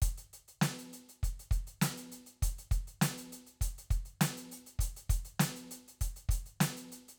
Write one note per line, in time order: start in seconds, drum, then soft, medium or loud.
0.01 closed hi-hat loud
0.01 kick medium
0.18 closed hi-hat medium
0.33 closed hi-hat medium
0.48 closed hi-hat soft
0.61 closed hi-hat medium
0.61 snare loud
0.79 open hi-hat medium
0.93 closed hi-hat medium
1.09 closed hi-hat soft
1.23 closed hi-hat medium
1.23 kick medium
1.39 closed hi-hat medium
1.51 closed hi-hat medium
1.51 kick medium
1.67 closed hi-hat soft
1.81 closed hi-hat loud
1.81 snare loud
1.81 hi-hat pedal soft
1.97 open hi-hat medium
2.12 closed hi-hat medium
2.26 closed hi-hat soft
2.42 closed hi-hat loud
2.42 kick medium
2.58 closed hi-hat medium
2.71 closed hi-hat medium
2.71 kick medium
2.87 closed hi-hat soft
3.01 closed hi-hat loud
3.01 snare loud
3.18 closed hi-hat medium
3.32 closed hi-hat medium
3.47 closed hi-hat soft
3.61 closed hi-hat loud
3.61 kick medium
3.78 closed hi-hat medium
3.91 closed hi-hat medium
3.91 kick medium
4.05 closed hi-hat soft
4.21 closed hi-hat loud
4.21 snare loud
4.37 closed hi-hat medium
4.51 open hi-hat medium
4.66 closed hi-hat medium
4.79 closed hi-hat loud
4.79 kick medium
4.96 closed hi-hat medium
5.09 closed hi-hat loud
5.09 kick medium
5.25 closed hi-hat soft
5.40 closed hi-hat loud
5.40 snare loud
5.56 closed hi-hat medium
5.71 closed hi-hat medium
5.88 closed hi-hat soft
6.01 closed hi-hat medium
6.01 kick medium
6.16 closed hi-hat medium
6.29 closed hi-hat loud
6.29 kick medium
6.46 closed hi-hat soft
6.60 closed hi-hat loud
6.60 snare loud
6.77 closed hi-hat medium
6.92 closed hi-hat medium
7.08 closed hi-hat medium